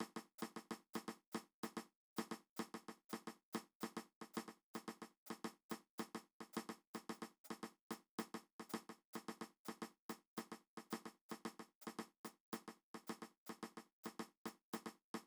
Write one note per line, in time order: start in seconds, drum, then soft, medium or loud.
0.01 cross-stick medium
0.17 cross-stick medium
0.39 cross-stick medium
0.39 hi-hat pedal medium
0.57 cross-stick soft
0.71 cross-stick medium
0.94 cross-stick medium
0.94 hi-hat pedal medium
1.09 cross-stick medium
1.32 cross-stick medium
1.32 hi-hat pedal medium
1.64 cross-stick medium
1.64 hi-hat pedal medium
1.77 cross-stick medium
2.17 cross-stick medium
2.17 hi-hat pedal medium
2.32 cross-stick medium
2.57 cross-stick medium
2.57 hi-hat pedal medium
2.75 cross-stick soft
2.89 cross-stick soft
3.10 cross-stick medium
3.10 hi-hat pedal medium
3.28 cross-stick soft
3.53 cross-stick medium
3.53 hi-hat pedal medium
3.81 cross-stick medium
3.81 hi-hat pedal medium
3.97 cross-stick medium
4.22 cross-stick soft
4.34 cross-stick medium
4.34 hi-hat pedal medium
4.49 cross-stick soft
4.75 cross-stick medium
4.75 hi-hat pedal medium
4.89 cross-stick soft
5.02 cross-stick soft
5.27 cross-stick medium
5.27 hi-hat pedal medium
5.45 cross-stick medium
5.70 cross-stick medium
5.70 hi-hat pedal medium
5.99 cross-stick medium
5.99 hi-hat pedal medium
6.15 cross-stick medium
6.41 cross-stick soft
6.54 cross-stick medium
6.54 hi-hat pedal medium
6.70 cross-stick soft
6.94 cross-stick soft
6.94 hi-hat pedal medium
7.10 cross-stick medium
7.15 hi-hat pedal soft
7.23 cross-stick soft
7.45 hi-hat pedal medium
7.51 cross-stick medium
7.64 cross-stick soft
7.91 cross-stick medium
7.91 hi-hat pedal medium
8.19 cross-stick medium
8.19 hi-hat pedal medium
8.35 cross-stick soft
8.60 cross-stick soft
8.70 hi-hat pedal medium
8.74 cross-stick medium
8.90 cross-stick soft
9.14 cross-stick soft
9.14 hi-hat pedal medium
9.29 cross-stick medium
9.42 cross-stick soft
9.66 cross-stick medium
9.66 hi-hat pedal medium
9.82 cross-stick medium
10.10 cross-stick medium
10.10 hi-hat pedal medium
10.37 cross-stick medium
10.37 hi-hat pedal medium
10.52 cross-stick soft
10.78 cross-stick soft
10.91 cross-stick medium
10.91 hi-hat pedal medium
11.06 cross-stick soft
11.30 cross-stick soft
11.30 hi-hat pedal medium
11.46 cross-stick medium
11.60 cross-stick soft
11.82 hi-hat pedal medium
11.87 cross-stick soft
11.99 cross-stick medium
12.25 cross-stick soft
12.25 hi-hat pedal medium
12.53 cross-stick medium
12.53 hi-hat pedal medium
12.68 cross-stick soft
12.95 cross-stick soft
13.07 cross-stick medium
13.07 hi-hat pedal medium
13.23 cross-stick soft
13.47 cross-stick soft
13.47 hi-hat pedal medium
13.63 cross-stick soft
13.78 cross-stick soft
14.04 cross-stick soft
14.04 hi-hat pedal medium
14.20 cross-stick medium
14.46 cross-stick medium
14.46 hi-hat pedal medium
14.74 cross-stick medium
14.74 hi-hat pedal medium
14.86 cross-stick soft
15.15 cross-stick medium